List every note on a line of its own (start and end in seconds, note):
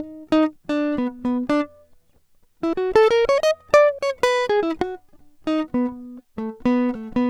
0.00 0.28 D#4
0.33 0.55 D#4
0.70 1.04 D4
1.51 1.69 D4
2.65 2.75 E4
2.97 3.11 A4
3.13 3.30 A#4
3.30 3.42 C#5
3.45 3.57 D#5
3.75 3.94 D5
4.04 4.16 C#5
4.24 4.54 B4
4.51 4.67 G#4
4.82 5.02 F#4
5.48 5.71 D#4
5.75 5.95 B3
6.39 6.56 A3
6.67 6.90 B3
6.91 7.13 A3
7.17 7.29 B3